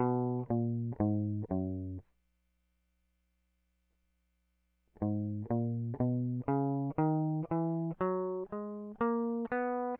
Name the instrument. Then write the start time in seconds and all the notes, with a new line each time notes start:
electric guitar
0.02 B2
0.52 A#2
1.01 G#2
1.53 F#2
5.03 G#2
5.52 A#2
6.01 B2
6.49 C#3
6.99 D#3
7.52 E3
8.01 F#3
8.53 G#3
9.01 A#3
9.52 B3